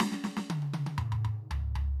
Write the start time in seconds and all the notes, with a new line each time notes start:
0.00 snare
0.12 snare
0.24 snare
0.37 snare
0.50 high tom
0.62 high tom
0.73 high tom
0.86 high tom
0.98 mid tom
1.12 mid tom
1.25 mid tom
1.51 floor tom
1.75 floor tom